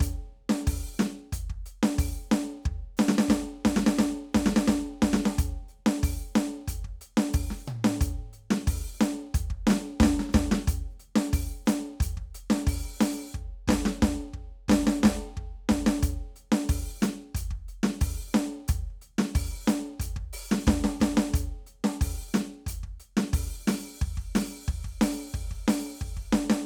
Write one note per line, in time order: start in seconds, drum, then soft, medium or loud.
0.01 closed hi-hat loud
0.01 kick loud
0.50 snare loud
0.68 open hi-hat loud
0.68 kick loud
1.00 closed hi-hat medium
1.00 snare loud
1.00 hi-hat pedal soft
1.33 closed hi-hat loud
1.33 kick medium
1.50 kick medium
1.66 closed hi-hat medium
1.83 snare loud
1.99 open hi-hat loud
1.99 kick loud
2.32 snare loud
2.63 kick loud
2.63 hi-hat pedal soft
2.98 kick soft
2.98 snare loud
2.98 hi-hat pedal medium
3.09 snare loud
3.19 snare loud
3.29 kick medium
3.29 snare loud
3.66 kick medium
3.66 snare loud
3.77 snare loud
3.87 snare loud
3.99 kick soft
3.99 snare loud
3.99 hi-hat pedal soft
4.34 kick medium
4.34 snare loud
4.34 hi-hat pedal soft
4.47 snare loud
4.57 snare loud
4.68 kick medium
4.68 snare loud
5.03 kick medium
5.03 snare loud
5.14 snare loud
5.26 snare loud
5.39 closed hi-hat loud
5.39 kick loud
5.69 hi-hat pedal soft
5.87 snare loud
6.04 open hi-hat loud
6.04 kick loud
6.35 snare loud
6.35 hi-hat pedal soft
6.68 closed hi-hat loud
6.68 kick medium
6.85 kick medium
7.02 closed hi-hat medium
7.18 snare loud
7.34 kick loud
7.34 open hi-hat loud
7.51 snare medium
7.67 hi-hat pedal soft
7.67 mid tom loud
7.85 snare loud
8.01 closed hi-hat loud
8.01 kick loud
8.34 closed hi-hat soft
8.51 snare loud
8.68 open hi-hat loud
8.68 kick loud
9.01 closed hi-hat medium
9.01 snare loud
9.01 hi-hat pedal soft
9.35 closed hi-hat loud
9.35 kick loud
9.51 kick medium
9.68 snare loud
9.68 hi-hat pedal medium
9.71 snare loud
10.01 kick loud
10.01 snare loud
10.01 hi-hat pedal medium
10.04 snare loud
10.20 snare medium
10.25 cross-stick soft
10.30 snare soft
10.30 hi-hat pedal medium
10.35 kick loud
10.35 snare loud
10.52 snare loud
10.68 closed hi-hat loud
10.68 kick loud
10.91 hi-hat pedal soft
11.00 closed hi-hat medium
11.16 snare loud
11.34 open hi-hat loud
11.34 kick loud
11.66 closed hi-hat loud
11.66 snare loud
11.66 hi-hat pedal soft
12.01 closed hi-hat loud
12.01 kick loud
12.18 kick medium
12.35 closed hi-hat medium
12.51 snare loud
12.57 snare soft
12.67 open hi-hat loud
12.67 kick loud
12.85 kick soft
13.01 open hi-hat loud
13.01 snare loud
13.33 kick medium
13.33 hi-hat pedal soft
13.68 kick medium
13.68 snare loud
13.71 snare loud
13.86 snare loud
14.03 kick loud
14.03 snare loud
14.34 kick medium
14.34 snare soft
14.69 kick medium
14.69 snare loud
14.72 snare loud
14.88 snare loud
15.04 kick medium
15.04 snare loud
15.06 snare loud
15.38 kick medium
15.70 kick medium
15.70 snare loud
15.87 snare loud
16.03 closed hi-hat loud
16.03 kick loud
16.37 closed hi-hat medium
16.53 snare loud
16.69 open hi-hat loud
16.69 kick loud
17.01 closed hi-hat loud
17.01 snare loud
17.01 hi-hat pedal medium
17.35 closed hi-hat loud
17.35 kick loud
17.51 kick medium
17.69 closed hi-hat soft
17.84 snare loud
18.01 open hi-hat loud
18.01 kick loud
18.33 snare loud
18.33 hi-hat pedal medium
18.69 closed hi-hat loud
18.69 kick loud
18.91 kick soft
19.02 closed hi-hat medium
19.19 snare loud
19.25 snare soft
19.36 open hi-hat loud
19.36 kick loud
19.66 closed hi-hat loud
19.66 snare loud
19.66 hi-hat pedal medium
20.00 closed hi-hat loud
20.00 kick medium
20.17 kick medium
20.33 open hi-hat loud
20.52 snare loud
20.68 kick loud
20.68 snare loud
20.85 snare loud
21.01 kick medium
21.01 snare loud
21.01 hi-hat pedal medium
21.18 snare loud
21.34 closed hi-hat loud
21.34 kick loud
21.67 closed hi-hat soft
21.85 snare loud
22.02 open hi-hat loud
22.02 kick loud
22.34 closed hi-hat medium
22.34 snare loud
22.34 hi-hat pedal soft
22.67 closed hi-hat loud
22.67 kick medium
22.84 kick medium
23.00 closed hi-hat medium
23.18 snare loud
23.34 open hi-hat loud
23.34 kick loud
23.68 open hi-hat loud
23.68 snare loud
24.02 kick loud
24.18 kick medium
24.22 crash soft
24.36 open hi-hat loud
24.36 snare loud
24.68 open hi-hat soft
24.68 kick loud
24.85 kick medium
24.89 crash soft
25.02 open hi-hat loud
25.02 snare loud
25.34 open hi-hat medium
25.34 kick medium
25.52 kick medium
25.57 ride soft
25.68 open hi-hat loud
25.68 snare loud
26.02 kick medium
26.17 kick medium
26.21 crash soft
26.21 ride soft
26.33 snare loud
26.33 hi-hat pedal soft
26.50 snare loud